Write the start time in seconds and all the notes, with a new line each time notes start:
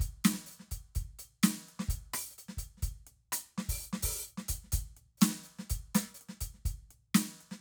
0.01 closed hi-hat, kick
0.25 closed hi-hat, snare
0.34 snare
0.47 hi-hat pedal
0.52 closed hi-hat
0.61 snare
0.69 closed hi-hat, snare
0.73 kick
0.96 closed hi-hat, kick
1.03 kick
1.20 closed hi-hat
1.44 closed hi-hat, snare
1.70 closed hi-hat
1.80 snare
1.89 closed hi-hat, kick
1.95 kick
2.14 open hi-hat, cross-stick
2.31 hi-hat pedal
2.39 closed hi-hat
2.50 snare
2.58 closed hi-hat, kick
2.78 snare
2.83 closed hi-hat, kick
3.08 closed hi-hat
3.33 closed hi-hat, cross-stick
3.59 snare
3.70 open hi-hat, kick
3.84 hi-hat pedal
3.94 snare
4.04 open hi-hat, kick
4.22 hi-hat pedal
4.27 closed hi-hat
4.38 snare
4.49 closed hi-hat, kick
4.65 snare
4.73 closed hi-hat, kick
4.80 kick
4.98 closed hi-hat
5.18 closed hi-hat, hi-hat pedal
5.23 snare
5.30 snare
5.44 hi-hat pedal
5.60 snare
5.71 closed hi-hat, kick
5.96 closed hi-hat, snare
6.15 hi-hat pedal
6.22 closed hi-hat
6.30 snare
6.42 closed hi-hat, kick
6.55 snare
6.66 closed hi-hat, kick
6.92 closed hi-hat
7.16 closed hi-hat, snare
7.42 closed hi-hat
7.52 snare